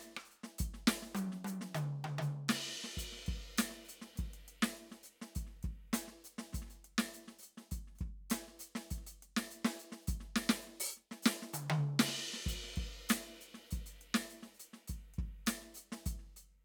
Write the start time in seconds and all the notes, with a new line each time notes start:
0.01 closed hi-hat
0.17 cross-stick
0.25 hi-hat pedal
0.31 closed hi-hat
0.43 snare
0.58 closed hi-hat, kick
0.67 kick
0.70 kick, snare
0.87 snare
1.02 snare
1.15 hi-hat pedal, high tom
1.32 snare
1.45 hi-hat pedal, high tom
1.61 snare
1.75 hi-hat pedal, mid tom
2.04 mid tom
2.18 hi-hat pedal, mid tom
2.49 snare, crash
2.84 snare
2.97 closed hi-hat, kick
3.12 snare
3.16 snare
3.26 kick, closed hi-hat
3.37 kick
3.58 closed hi-hat, snare
3.71 snare
3.85 closed hi-hat, hi-hat pedal
4.01 snare
4.15 kick, snare, closed hi-hat
4.21 snare
4.24 kick, snare
4.29 snare
4.33 closed hi-hat
4.48 closed hi-hat
4.62 snare
4.77 closed hi-hat
4.91 snare
5.03 closed hi-hat, hi-hat pedal
5.22 snare
5.35 closed hi-hat, kick
5.47 snare
5.50 snare
5.63 kick, closed hi-hat
5.72 kick
5.93 closed hi-hat, snare
6.08 snare
6.24 hi-hat pedal
6.38 snare
6.53 closed hi-hat, kick, snare
6.62 kick, snare
6.66 open hi-hat, snare
6.70 snare
6.75 snare
6.84 closed hi-hat
6.98 snare
7.14 closed hi-hat
7.28 snare
7.39 closed hi-hat, hi-hat pedal
7.57 snare
7.71 closed hi-hat, kick
7.87 snare
7.95 snare, closed hi-hat, hi-hat pedal
8.01 kick
8.07 kick
8.09 kick
8.30 closed hi-hat, snare
8.48 snare
8.59 closed hi-hat, hi-hat pedal
8.75 snare
8.90 closed hi-hat, kick
8.98 snare
9.02 snare
9.07 closed hi-hat
9.22 closed hi-hat
9.37 snare
9.51 closed hi-hat
9.65 snare
9.73 hi-hat pedal
9.79 closed hi-hat
9.92 snare
10.01 hi-hat pedal
10.07 closed hi-hat, kick
10.15 kick
10.18 kick, snare
10.36 snare
10.49 snare
10.61 hi-hat pedal
10.67 snare
10.80 open hi-hat
10.88 hi-hat pedal
10.97 snare
11.11 snare
11.23 snare, hi-hat pedal
11.42 snare
11.53 hi-hat pedal, mid tom
11.70 mid tom
11.99 snare, crash
12.08 snare
12.33 snare
12.46 closed hi-hat, kick
12.53 kick
12.56 kick
12.63 snare
12.67 snare
12.72 snare, closed hi-hat
12.77 kick
13.09 closed hi-hat, snare
13.41 open hi-hat, hi-hat pedal
13.54 snare
13.64 snare, hi-hat pedal
13.69 closed hi-hat, kick, snare
13.86 closed hi-hat
14.01 closed hi-hat
14.14 snare
14.30 closed hi-hat
14.43 snare
14.54 hi-hat pedal
14.60 closed hi-hat
14.73 snare
14.85 closed hi-hat, snare
14.89 kick
14.98 snare
15.03 snare
15.14 closed hi-hat
15.18 kick
15.25 kick
15.27 kick
15.47 closed hi-hat, snare
15.62 snare
15.74 closed hi-hat, hi-hat pedal
15.92 snare
16.06 closed hi-hat, kick
16.15 kick, snare
16.23 snare
16.29 snare
16.36 closed hi-hat